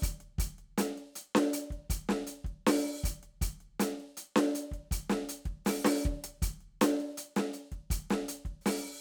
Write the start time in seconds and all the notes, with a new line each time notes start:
0.01 closed hi-hat, kick, hi-hat pedal
0.21 closed hi-hat
0.39 closed hi-hat, kick
0.59 closed hi-hat
0.78 closed hi-hat, snare
0.98 closed hi-hat
1.14 closed hi-hat, hi-hat pedal
1.35 snare, closed hi-hat
1.54 closed hi-hat
1.71 kick, closed hi-hat
1.90 closed hi-hat, kick
2.09 snare
2.27 closed hi-hat
2.45 kick, closed hi-hat
2.67 open hi-hat, snare
3.04 closed hi-hat, kick, hi-hat pedal
3.23 closed hi-hat
3.42 closed hi-hat, kick
3.61 closed hi-hat
3.80 closed hi-hat, snare
4.00 closed hi-hat
4.17 closed hi-hat
4.36 snare, closed hi-hat
4.55 closed hi-hat
4.72 kick, closed hi-hat
4.92 closed hi-hat, kick
5.10 snare, closed hi-hat
5.29 closed hi-hat
5.46 kick, closed hi-hat
5.65 open hi-hat, snare, hi-hat pedal
5.85 open hi-hat, snare
6.05 kick, hi-hat pedal
6.24 closed hi-hat
6.43 closed hi-hat, kick
6.61 closed hi-hat
6.82 closed hi-hat, snare
7.01 closed hi-hat
7.17 closed hi-hat, hi-hat pedal
7.37 snare, closed hi-hat
7.54 closed hi-hat
7.72 kick, closed hi-hat
7.91 closed hi-hat, kick
8.10 snare, closed hi-hat
8.29 closed hi-hat
8.45 kick, closed hi-hat
8.62 hi-hat pedal
8.66 open hi-hat, snare